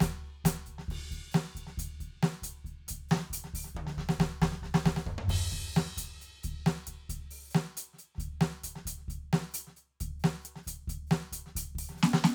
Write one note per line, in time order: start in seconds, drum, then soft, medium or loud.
0.01 open hi-hat loud
0.01 kick medium
0.01 snare loud
0.45 closed hi-hat loud
0.45 kick medium
0.45 snare loud
0.67 closed hi-hat soft
0.67 kick soft
0.79 snare soft
0.89 kick medium
0.89 crash medium
1.12 closed hi-hat soft
1.12 kick medium
1.32 snare loud
1.32 hi-hat pedal medium
1.56 kick soft
1.56 closed hi-hat medium
1.67 snare soft
1.78 closed hi-hat medium
1.78 kick medium
1.89 snare soft
2.01 closed hi-hat soft
2.01 kick soft
2.23 snare loud
2.43 closed hi-hat loud
2.43 kick soft
2.65 closed hi-hat soft
2.65 kick soft
2.87 closed hi-hat loud
2.87 kick soft
2.87 snare soft
3.09 snare loud
3.09 hi-hat pedal soft
3.16 snare medium
3.31 closed hi-hat loud
3.31 kick soft
3.45 snare soft
3.54 open hi-hat loud
3.54 kick medium
3.65 snare soft
3.75 kick medium
3.75 high tom loud
3.87 snare medium
3.98 kick medium
3.98 snare medium
4.09 snare loud
4.20 kick medium
4.20 snare loud
4.42 kick medium
4.42 snare loud
4.53 snare soft
4.63 kick soft
4.63 snare medium
4.75 snare loud
4.86 kick medium
4.86 snare loud
4.86 hi-hat pedal soft
4.97 snare medium
5.07 kick medium
5.07 floor tom medium
5.19 floor tom loud
5.29 kick medium
5.29 crash loud
5.51 open hi-hat soft
5.51 kick medium
5.73 snare loud
5.73 hi-hat pedal soft
5.98 closed hi-hat loud
5.98 kick soft
6.17 snare soft
6.22 closed hi-hat medium
6.44 closed hi-hat medium
6.44 kick medium
6.67 snare loud
6.87 kick soft
6.87 closed hi-hat medium
7.10 closed hi-hat medium
7.10 kick medium
7.20 snare soft
7.31 open hi-hat medium
7.51 hi-hat pedal medium
7.55 snare loud
7.77 closed hi-hat loud
7.94 snare soft
7.99 closed hi-hat medium
8.15 kick medium
8.15 snare soft
8.20 closed hi-hat medium
8.41 snare loud
8.64 closed hi-hat loud
8.64 kick soft
8.76 snare soft
8.86 closed hi-hat loud
8.86 kick soft
8.98 snare soft
9.09 closed hi-hat medium
9.09 kick medium
9.33 snare loud
9.39 snare medium
9.52 closed hi-hat loud
9.52 hi-hat pedal soft
9.68 snare soft
9.77 closed hi-hat soft
10.01 closed hi-hat medium
10.01 kick medium
10.20 hi-hat pedal soft
10.25 snare loud
10.42 closed hi-hat medium
10.42 hi-hat pedal soft
10.56 snare soft
10.64 kick soft
10.64 hi-hat pedal soft
10.68 closed hi-hat loud
10.88 closed hi-hat medium
10.88 kick medium
11.07 hi-hat pedal soft
11.12 snare loud
11.33 closed hi-hat loud
11.33 kick soft
11.47 snare soft
11.56 closed hi-hat loud
11.56 kick medium
11.76 kick medium
11.76 open hi-hat medium
11.90 snare soft
11.95 snare soft
11.95 hi-hat pedal soft
12.00 snare soft
12.03 snare loud
12.14 snare loud
12.25 snare loud